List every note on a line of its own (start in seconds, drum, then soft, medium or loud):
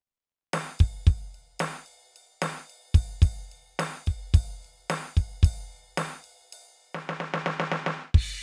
0.53 snare loud
0.53 ride loud
0.79 kick loud
0.79 ride medium
1.07 kick loud
1.07 ride medium
1.34 ride soft
1.59 snare loud
1.59 ride loud
1.86 ride soft
2.16 ride medium
2.42 snare loud
2.42 ride loud
2.69 ride medium
2.94 kick loud
2.94 ride loud
3.22 kick loud
3.22 ride loud
3.51 ride soft
3.79 snare loud
3.79 ride loud
4.06 kick medium
4.06 ride medium
4.34 kick loud
4.34 ride loud
4.64 ride soft
4.90 snare loud
4.90 ride loud
5.17 kick loud
5.17 ride medium
5.43 kick loud
5.43 ride loud
5.97 snare loud
5.97 ride loud
6.24 ride medium
6.52 ride medium
6.94 snare medium
7.09 snare loud
7.20 snare medium
7.34 snare loud
7.46 snare loud
7.60 snare loud
7.71 snare loud
7.86 snare loud
8.14 kick loud
8.14 crash loud